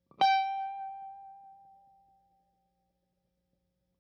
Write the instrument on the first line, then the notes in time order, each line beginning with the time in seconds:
electric guitar
0.22 G5